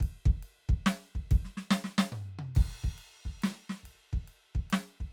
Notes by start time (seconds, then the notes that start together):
0.00 kick, ride
0.25 kick
0.43 ride
0.69 kick
0.86 snare, ride
1.15 kick
1.31 kick, ride
1.44 snare
1.57 snare
1.71 snare
1.84 snare
1.98 snare
2.12 mid tom
2.39 high tom
2.55 kick, crash
2.83 kick
2.98 ride
3.25 kick
3.42 snare, ride
3.69 snare
3.83 kick, ride
4.13 kick
4.28 ride
4.55 kick
4.70 snare, ride
5.00 kick